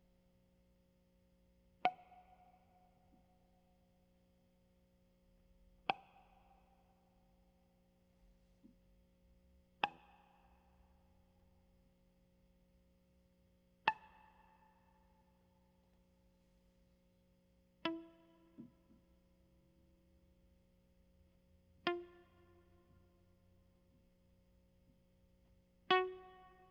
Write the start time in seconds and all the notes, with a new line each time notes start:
1.86 F#5
5.90 G5
9.85 G#5
13.89 A5
17.86 E4
21.88 F4
25.91 F#4